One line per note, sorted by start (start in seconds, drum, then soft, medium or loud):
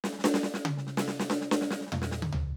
0.04 snare loud
0.13 snare soft
0.19 snare medium
0.24 snare loud
0.34 snare loud
0.43 snare medium
0.54 snare medium
0.65 high tom loud
0.77 snare soft
0.87 snare medium
0.97 snare loud
1.08 snare medium
1.19 snare loud
1.30 snare medium
1.41 snare medium
1.51 snare loud
1.61 snare medium
1.71 snare loud
1.87 snare soft
1.92 mid tom loud
2.02 snare medium
2.11 snare medium
2.22 high tom loud
2.33 floor tom loud